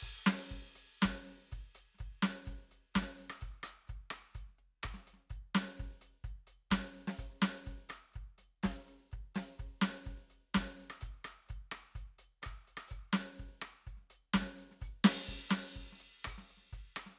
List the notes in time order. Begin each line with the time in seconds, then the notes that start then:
0.01 closed hi-hat, kick, hi-hat pedal
0.26 closed hi-hat, snare
0.49 closed hi-hat, kick
0.65 snare
0.71 snare
0.75 closed hi-hat
1.01 closed hi-hat, kick, snare
1.27 closed hi-hat
1.41 snare
1.52 closed hi-hat, kick
1.75 closed hi-hat
1.94 snare
1.99 closed hi-hat, kick
2.22 closed hi-hat, snare
2.46 closed hi-hat, kick, snare
2.53 snare
2.57 snare
2.71 closed hi-hat
2.94 closed hi-hat, kick, snare
3.02 snare
3.19 closed hi-hat
3.30 cross-stick
3.41 closed hi-hat, kick
3.63 closed hi-hat, cross-stick
3.87 open hi-hat, kick, hi-hat pedal
4.10 closed hi-hat, cross-stick
4.35 closed hi-hat, kick
4.48 snare
4.58 closed hi-hat
4.83 closed hi-hat, kick, cross-stick
4.94 snare
5.07 closed hi-hat
5.13 snare
5.30 closed hi-hat, kick
5.54 closed hi-hat, snare
5.63 snare
5.77 open hi-hat, kick
6.01 closed hi-hat
6.24 closed hi-hat, kick
6.47 closed hi-hat
6.71 closed hi-hat, kick, snare
6.80 snare
6.95 closed hi-hat
7.07 snare
7.19 closed hi-hat, kick
7.42 closed hi-hat, snare
7.49 snare
7.64 closed hi-hat, kick, hi-hat pedal
7.89 closed hi-hat, cross-stick
8.13 closed hi-hat, kick
8.38 closed hi-hat, snare
8.63 closed hi-hat, kick, snare
8.88 closed hi-hat
8.98 snare
9.12 closed hi-hat, kick
9.35 closed hi-hat, snare
9.59 closed hi-hat, kick
9.81 closed hi-hat, snare
9.90 snare
10.05 closed hi-hat, kick
10.16 snare
10.19 snare
10.30 closed hi-hat
10.54 closed hi-hat, kick, snare
10.60 snare
10.79 closed hi-hat
10.90 cross-stick
11.01 closed hi-hat, kick
11.24 closed hi-hat, cross-stick
11.47 closed hi-hat, kick, hi-hat pedal
11.71 closed hi-hat, cross-stick
11.95 closed hi-hat, kick
12.18 closed hi-hat
12.42 open hi-hat, kick, cross-stick
12.67 closed hi-hat
12.77 cross-stick
12.88 open hi-hat, kick
13.13 closed hi-hat, snare
13.38 open hi-hat, kick, hi-hat pedal
13.62 closed hi-hat, cross-stick
13.86 open hi-hat, kick
13.97 snare
14.01 snare
14.10 closed hi-hat
14.33 open hi-hat, kick, snare
14.41 snare
14.58 closed hi-hat
14.71 snare
14.81 open hi-hat, kick, hi-hat pedal
15.04 snare, crash
15.16 snare
15.26 open hi-hat, kick
15.49 closed hi-hat, snare
15.76 kick, open hi-hat
15.92 snare
15.96 snare
16.00 closed hi-hat
16.24 open hi-hat, kick, cross-stick
16.38 snare
16.50 closed hi-hat
16.57 snare
16.61 snare
16.64 snare
16.70 closed hi-hat, kick, snare
16.96 closed hi-hat, cross-stick
17.06 snare